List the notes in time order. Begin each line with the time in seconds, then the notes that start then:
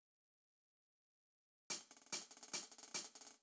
1.70 closed hi-hat
1.81 closed hi-hat
1.91 closed hi-hat
1.97 closed hi-hat
2.02 closed hi-hat
2.06 closed hi-hat
2.10 closed hi-hat
2.13 closed hi-hat
2.22 closed hi-hat
2.31 closed hi-hat
2.37 closed hi-hat
2.41 closed hi-hat
2.43 closed hi-hat
2.48 closed hi-hat
2.52 closed hi-hat
2.54 closed hi-hat
2.63 closed hi-hat
2.72 closed hi-hat
2.78 closed hi-hat
2.83 closed hi-hat
2.88 closed hi-hat
2.91 closed hi-hat
2.94 closed hi-hat
3.04 closed hi-hat
3.15 closed hi-hat
3.21 closed hi-hat
3.25 closed hi-hat
3.27 closed hi-hat
3.31 closed hi-hat
3.34 closed hi-hat